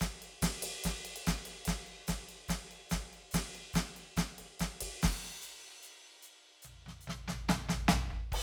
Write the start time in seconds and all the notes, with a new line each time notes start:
0.01 kick, snare, hi-hat pedal, crash
0.23 crash
0.42 kick, snare, hi-hat pedal, crash
0.53 kick
0.63 crash
0.84 kick, snare, hi-hat pedal, crash
0.95 kick
1.06 crash
1.17 crash
1.27 kick, snare, hi-hat pedal, crash
1.46 crash
1.66 kick, snare, hi-hat pedal, crash
1.87 crash
2.08 kick, snare, hi-hat pedal, crash
2.29 crash
2.49 kick, snare, hi-hat pedal, crash
2.72 crash
2.90 kick, snare, hi-hat pedal, crash
3.14 crash
3.32 kick, snare, hi-hat pedal, crash
3.56 crash
3.74 kick, snare, hi-hat pedal, crash
3.97 crash
4.17 kick, snare, hi-hat pedal, crash
4.39 kick, crash
4.60 kick, snare, hi-hat pedal, crash
4.81 kick, crash
5.03 kick, snare, hi-hat pedal, crash
5.42 hi-hat pedal
5.83 hi-hat pedal
6.23 hi-hat pedal
6.63 floor tom, hi-hat pedal
6.87 snare, floor tom
7.01 hi-hat pedal
7.08 snare, floor tom
7.29 snare, floor tom
7.49 snare, floor tom
7.70 snare, floor tom
7.89 snare, floor tom
8.11 kick
8.33 kick, crash